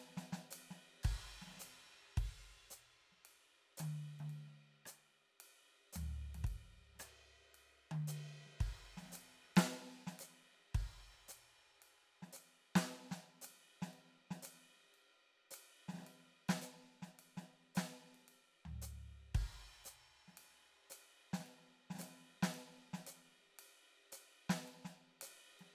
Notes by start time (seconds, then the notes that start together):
0.01 ride
0.17 snare
0.33 snare
0.51 hi-hat pedal, ride
0.71 snare
1.04 kick, crash
1.42 snare
1.47 snare
1.51 snare
1.54 snare
1.60 snare, hi-hat pedal, ride
2.18 kick, ride, crash
2.71 hi-hat pedal, ride
3.12 snare
3.25 ride
3.78 hi-hat pedal, high tom, ride
4.20 high tom, ride
4.30 ride
4.47 snare
4.86 cross-stick, hi-hat pedal, ride
5.41 ride
5.93 floor tom, hi-hat pedal, ride
6.35 floor tom, ride
6.44 kick, ride
6.96 snare, hi-hat pedal
7.00 cross-stick, ride
7.55 ride
7.91 high tom
8.08 hi-hat pedal, ride
8.46 snare
8.61 kick, crash
8.97 snare
9.02 snare
9.06 snare
9.09 snare
9.12 snare, hi-hat pedal, ride
9.57 snare, ride
9.67 ride
10.07 snare
10.20 hi-hat pedal, ride
10.75 kick, crash
11.29 hi-hat pedal, ride
11.82 ride
12.23 snare
12.33 hi-hat pedal, ride
12.76 snare, ride
13.11 snare
13.42 hi-hat pedal, ride
13.82 snare
13.94 ride
14.31 snare
14.43 hi-hat pedal, ride
14.94 ride
15.51 hi-hat pedal, ride
15.89 snare
15.94 snare
15.97 snare
16.00 snare
16.03 snare
16.07 ride
16.49 snare, ride
16.58 snare
16.62 hi-hat pedal, ride
17.02 snare
17.19 ride
17.37 snare
17.75 snare, hi-hat pedal, ride
18.15 ride
18.28 ride
18.66 floor tom
18.82 hi-hat pedal, ride
19.35 kick, crash
19.85 hi-hat pedal, ride
20.28 snare
20.38 ride
20.90 hi-hat pedal, ride
21.33 snare, ride
21.40 snare
21.46 ride
21.90 snare
21.95 snare
21.98 snare, hi-hat pedal
22.01 snare, ride
22.05 snare
22.43 snare, ride
22.54 ride
22.94 snare
23.07 hi-hat pedal, ride
23.59 ride
24.12 hi-hat pedal, ride
24.50 snare
24.68 ride
24.85 snare
25.22 hi-hat pedal, ride
25.60 snare, ride
25.66 snare